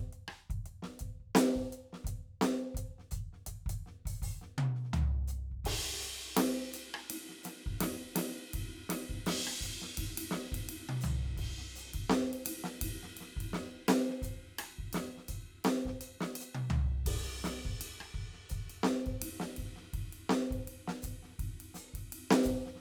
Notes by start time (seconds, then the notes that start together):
0.13 open hi-hat
0.29 cross-stick
0.50 kick, closed hi-hat
0.67 closed hi-hat
0.83 snare
1.00 kick, closed hi-hat
1.21 kick
1.36 open hi-hat, snare
1.56 kick
1.73 open hi-hat
1.93 snare
2.05 kick, open hi-hat
2.42 open hi-hat, snare
2.75 kick, open hi-hat
2.99 snare
3.12 open hi-hat, kick
3.33 snare
3.47 kick, open hi-hat
3.67 kick, open hi-hat
3.87 snare
4.06 kick, open hi-hat
4.23 open hi-hat, kick
4.42 snare
4.59 high tom
4.76 snare
4.84 snare
4.94 floor tom, hi-hat pedal
5.28 hi-hat pedal
5.52 kick
5.65 kick, crash, ride
6.02 hi-hat pedal
6.37 snare, ride
6.74 hi-hat pedal, ride
6.95 cross-stick
7.10 hi-hat pedal, ride
7.30 snare
7.44 snare, hi-hat pedal, ride
7.67 kick
7.81 snare, ride
8.16 snare, ride
8.40 snare
8.54 kick, ride
8.90 snare, ride
9.10 kick
9.27 snare, ride
9.48 cross-stick
9.61 kick, hi-hat pedal, ride
9.82 snare
9.98 kick, ride
10.18 ride
10.32 snare
10.53 kick, ride
10.70 ride
10.90 open hi-hat, high tom
11.02 floor tom, hi-hat pedal
11.23 kick, snare
11.37 kick, ride
11.59 snare
11.76 snare, hi-hat pedal
11.94 kick, ride
12.10 snare
12.34 ride
12.46 kick, hi-hat pedal, ride
12.65 snare
12.82 kick, ride
13.04 snare
13.18 snare, ride
13.37 kick
13.41 ride
13.54 snare
13.89 snare, ride bell
14.10 snare
14.22 kick, hi-hat pedal, ride
14.59 cross-stick, ride bell
14.79 kick
14.94 snare, ride bell
15.18 snare
15.29 kick, hi-hat pedal, ride bell
15.65 snare, ride bell
15.86 kick, snare
16.02 hi-hat pedal, ride bell
16.21 snare
16.36 ride bell
16.41 hi-hat pedal
16.55 high tom
16.70 floor tom, hi-hat pedal
16.86 kick
17.07 kick, ride bell, crash
17.45 snare, hi-hat pedal
17.66 kick
17.82 ride bell
18.01 cross-stick
18.15 kick
18.34 snare
18.50 kick, hi-hat pedal, ride bell
18.70 ride bell
18.84 snare
19.07 kick, ride bell
19.22 ride
19.41 snare
19.57 kick, ride
19.77 snare
19.83 snare
19.94 kick, ride
20.13 ride
20.30 snare
20.51 kick, ride
20.68 ride
20.88 snare
21.03 kick, hi-hat pedal, ride
21.23 snare
21.27 snare
21.31 snare
21.40 kick, ride
21.61 ride
21.75 snare, hi-hat pedal
21.94 kick, ride
22.13 ride
22.31 snare
22.44 kick, hi-hat pedal, ride
22.66 snare
22.76 snare